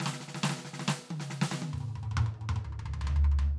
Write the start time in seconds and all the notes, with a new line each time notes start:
0.00 snare
0.06 snare
0.13 snare
0.20 snare
0.28 snare
0.35 snare
0.43 snare
0.49 snare
0.58 snare
0.65 snare
0.73 snare
0.79 snare
0.88 snare
1.10 high tom
1.20 snare
1.30 snare
1.41 snare
1.51 snare
1.62 high tom
1.73 mid tom
1.78 mid tom, ride
1.88 mid tom
1.96 mid tom
2.03 mid tom
2.11 mid tom
2.17 mid tom
2.26 mid tom
2.34 mid tom
2.41 mid tom
2.49 mid tom
2.56 mid tom
2.65 floor tom
2.72 floor tom
2.79 floor tom
2.86 floor tom
2.94 floor tom
3.01 floor tom
3.07 floor tom
3.16 floor tom
3.24 floor tom
3.32 floor tom
3.39 floor tom